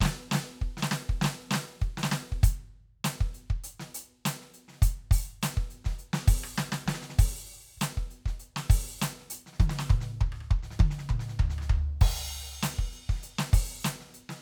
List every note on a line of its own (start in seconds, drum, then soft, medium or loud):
0.01 kick medium
0.01 snare loud
0.06 snare loud
0.32 snare loud
0.32 hi-hat pedal medium
0.35 snare loud
0.62 kick medium
0.77 snare medium
0.83 snare loud
0.91 snare loud
0.91 hi-hat pedal medium
1.10 kick medium
1.22 snare loud
1.25 snare loud
1.51 snare loud
1.54 snare loud
1.81 kick medium
1.81 hi-hat pedal soft
1.98 snare loud
2.04 snare loud
2.10 snare loud
2.10 hi-hat pedal soft
2.32 kick medium
2.43 closed hi-hat loud
2.43 kick loud
2.43 hi-hat pedal soft
3.05 open hi-hat loud
3.05 snare loud
3.05 hi-hat pedal medium
3.21 kick medium
3.35 closed hi-hat soft
3.50 kick medium
3.64 closed hi-hat loud
3.80 snare medium
3.95 closed hi-hat loud
4.26 closed hi-hat loud
4.26 snare loud
4.42 snare soft
4.48 snare soft
4.54 closed hi-hat soft
4.69 snare soft
4.73 snare soft
4.82 closed hi-hat loud
4.82 kick loud
5.11 open hi-hat loud
5.11 kick loud
5.42 closed hi-hat loud
5.42 snare loud
5.42 hi-hat pedal soft
5.57 kick medium
5.57 snare soft
5.71 closed hi-hat soft
5.85 kick medium
5.85 snare medium
5.88 snare soft
5.91 snare soft
5.99 closed hi-hat medium
6.14 snare loud
6.28 open hi-hat loud
6.28 kick loud
6.44 cross-stick medium
6.58 snare loud
6.58 hi-hat pedal medium
6.72 snare loud
6.87 kick soft
6.87 snare loud
6.94 snare medium
7.02 snare medium
7.10 snare medium
7.15 kick soft
7.19 open hi-hat loud
7.19 kick loud
7.78 open hi-hat loud
7.78 kick soft
7.78 snare loud
7.84 hi-hat pedal medium
7.98 kick medium
8.11 closed hi-hat soft
8.26 kick medium
8.26 snare soft
8.40 closed hi-hat medium
8.56 snare loud
8.70 open hi-hat loud
8.70 kick loud
9.01 closed hi-hat loud
9.01 snare loud
9.01 hi-hat pedal medium
9.21 snare soft
9.30 closed hi-hat loud
9.47 snare soft
9.53 snare soft
9.60 kick loud
9.60 hi-hat pedal medium
9.60 high tom loud
9.70 snare medium
9.79 snare loud
9.90 kick loud
9.90 mid tom loud
10.01 snare medium
10.21 kick medium
10.21 floor tom medium
10.33 cross-stick medium
10.41 cross-stick soft
10.51 kick loud
10.51 mid tom medium
10.63 snare soft
10.71 snare medium
10.80 kick loud
10.80 high tom loud
10.91 snare medium
10.99 snare medium
11.10 kick medium
11.10 mid tom loud
11.20 snare medium
11.29 snare soft
11.34 snare soft
11.40 kick medium
11.40 floor tom loud
11.50 snare medium
11.59 cross-stick medium
11.59 snare medium
11.70 kick loud
11.70 floor tom loud
12.01 kick loud
12.01 hi-hat pedal medium
12.01 crash loud
12.63 closed hi-hat loud
12.63 snare loud
12.79 kick medium
12.93 closed hi-hat soft
13.10 kick medium
13.10 snare soft
13.14 snare soft
13.17 snare soft
13.20 closed hi-hat medium
13.20 snare soft
13.39 snare loud
13.54 open hi-hat loud
13.54 kick loud
13.85 open hi-hat loud
13.85 snare loud
13.85 hi-hat pedal medium
14.00 snare soft
14.05 snare soft
14.08 snare soft
14.11 closed hi-hat medium
14.11 snare soft
14.30 snare medium